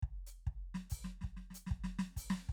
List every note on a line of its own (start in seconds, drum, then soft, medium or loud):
0.03 kick soft
0.27 hi-hat pedal medium
0.47 kick soft
0.74 snare soft
0.90 kick soft
0.90 hi-hat pedal medium
1.04 snare soft
1.21 kick soft
1.21 snare soft
1.37 snare soft
1.51 snare soft
1.55 hi-hat pedal medium
1.67 snare soft
1.71 kick soft
1.84 snare soft
1.99 snare medium
2.17 kick soft
2.17 hi-hat pedal medium
2.30 snare medium
2.49 kick soft